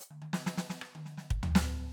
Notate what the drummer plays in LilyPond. \new DrumStaff \drummode { \time 4/4 \tempo 4 = 125 hhp16 tommh16 tommh16 sn16 sn16 sn16 sn16 ss16 tommh16 sn16 sn16 bd16 tomfh16 sn8. | }